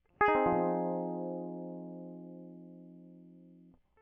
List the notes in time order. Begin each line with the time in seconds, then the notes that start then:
0.21 G#4
0.28 D#4
0.35 C4
0.47 F3
0.55 B2